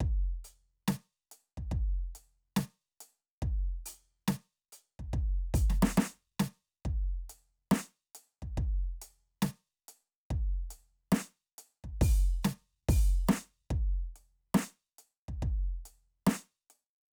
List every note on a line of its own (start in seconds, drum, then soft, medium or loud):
0.01 kick medium
0.45 closed hi-hat medium
0.88 snare loud
1.32 closed hi-hat medium
1.58 kick soft
1.72 kick medium
1.72 snare soft
1.72 crash soft
2.16 closed hi-hat medium
2.57 snare loud
3.01 closed hi-hat medium
3.43 kick medium
3.86 closed hi-hat loud
4.28 snare loud
4.73 closed hi-hat medium
5.00 kick soft
5.14 kick medium
5.14 snare soft
5.14 crash soft
5.14 ride soft
5.55 closed hi-hat loud
5.55 kick loud
5.70 snare medium
5.83 snare loud
5.98 snare loud
6.40 snare loud
6.86 kick medium
7.30 closed hi-hat medium
7.72 snare loud
8.16 closed hi-hat medium
8.43 kick soft
8.58 kick medium
9.02 closed hi-hat medium
9.43 snare loud
9.89 closed hi-hat medium
10.31 kick medium
10.31 snare soft
10.31 crash soft
10.71 closed hi-hat medium
11.13 snare loud
11.59 closed hi-hat medium
11.84 kick soft
12.02 open hi-hat loud
12.02 kick loud
12.43 snare loud
12.43 hi-hat pedal soft
12.89 open hi-hat loud
12.89 kick loud
13.28 snare loud
13.28 hi-hat pedal soft
13.71 kick medium
14.16 closed hi-hat soft
14.55 snare loud
14.99 closed hi-hat medium
15.29 kick soft
15.43 kick medium
15.43 snare soft
15.43 crash soft
15.43 ride soft
15.86 closed hi-hat medium
16.27 snare loud
16.71 closed hi-hat soft